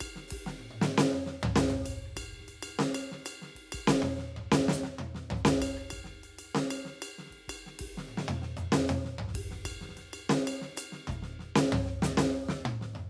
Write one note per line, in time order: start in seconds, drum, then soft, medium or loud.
0.01 kick soft
0.01 ride bell loud
0.07 kick soft
0.16 snare soft
0.28 hi-hat pedal medium
0.28 ride loud
0.32 kick soft
0.39 kick soft
0.47 snare medium
0.51 kick soft
0.60 high tom medium
0.71 closed hi-hat soft
0.71 high tom medium
0.82 snare loud
0.98 snare loud
1.10 hi-hat pedal soft
1.10 mid tom medium
1.27 snare medium
1.41 hi-hat pedal soft
1.41 floor tom loud
1.56 snare loud
1.69 hi-hat pedal medium
1.69 mid tom medium
1.79 cross-stick soft
1.85 kick soft
1.85 ride bell loud
1.90 hi-hat pedal soft
2.06 cross-stick soft
2.17 kick soft
2.17 ride bell loud
2.34 snare soft
2.40 snare soft
2.47 snare soft
2.47 ride bell medium
2.63 ride bell loud
2.79 snare loud
2.95 ride bell loud
3.12 snare soft
3.26 hi-hat pedal medium
3.26 ride bell loud
3.42 snare soft
3.50 cross-stick soft
3.55 kick soft
3.55 ride medium
3.73 kick soft
3.73 ride bell loud
3.88 snare loud
3.92 snare medium
4.03 mid tom loud
4.19 snare soft
4.37 floor tom medium
4.52 snare loud
4.69 snare loud
4.69 hi-hat pedal loud
4.84 snare medium
4.99 mid tom medium
5.15 snare medium
5.31 floor tom loud
5.37 hi-hat pedal soft
5.45 snare loud
5.61 kick soft
5.61 hi-hat pedal medium
5.61 ride bell loud
5.67 kick soft
5.78 cross-stick soft
5.91 kick soft
5.91 ride bell loud
6.05 snare soft
6.16 snare soft
6.24 ride bell medium
6.39 ride bell medium
6.55 snare loud
6.71 ride bell loud
6.85 snare soft
7.03 hi-hat pedal medium
7.03 ride bell loud
7.19 snare soft
7.26 snare soft
7.31 kick soft
7.31 ride medium
7.38 snare soft
7.48 kick soft
7.48 hi-hat pedal soft
7.48 ride bell loud
7.67 snare soft
7.79 kick soft
7.79 ride loud
7.87 kick soft
7.98 snare medium
8.09 high tom medium
8.18 snare medium
8.25 hi-hat pedal soft
8.25 mid tom loud
8.42 snare soft
8.57 hi-hat pedal medium
8.57 mid tom loud
8.72 snare loud
8.88 hi-hat pedal medium
8.88 mid tom loud
9.05 snare soft
9.19 floor tom medium
9.28 snare soft
9.35 kick soft
9.35 hi-hat pedal soft
9.35 ride loud
9.43 kick soft
9.46 kick soft
9.51 snare soft
9.56 snare soft
9.66 kick soft
9.66 ride bell loud
9.82 snare soft
9.89 snare soft
9.97 snare soft
9.97 ride bell medium
10.14 ride bell loud
10.30 snare loud
10.48 ride bell loud
10.62 snare soft
10.77 hi-hat pedal loud
10.77 ride bell loud
10.93 snare soft
11.08 kick soft
11.08 hi-hat pedal soft
11.08 mid tom medium
11.19 kick soft
11.21 kick soft
11.21 snare soft
11.40 snare soft
11.56 snare loud
11.73 floor tom loud
11.86 snare soft
12.03 kick soft
12.03 snare loud
12.03 hi-hat pedal loud
12.18 snare loud
12.34 mid tom soft
12.49 snare medium
12.66 high tom loud
12.82 snare soft
12.94 snare soft
12.94 mid tom medium